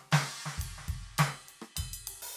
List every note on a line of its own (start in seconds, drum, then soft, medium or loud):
0.12 snare loud
0.12 crash loud
0.46 snare medium
0.58 kick soft
0.58 hi-hat pedal loud
0.58 ride loud
0.64 kick soft
0.67 kick soft
0.78 snare soft
0.82 snare soft
0.86 kick soft
0.86 snare soft
0.86 hi-hat pedal medium
0.86 ride medium
0.89 snare soft
0.95 kick soft
0.99 kick soft
1.18 snare loud
1.18 hi-hat pedal medium
1.18 ride bell loud
1.48 hi-hat pedal medium
1.48 ride medium
1.62 cross-stick medium
1.76 kick soft
1.76 snare soft
1.76 hi-hat pedal medium
1.76 ride bell loud
1.87 kick soft
1.93 ride bell medium
2.07 hi-hat pedal soft
2.07 ride loud
2.22 open hi-hat loud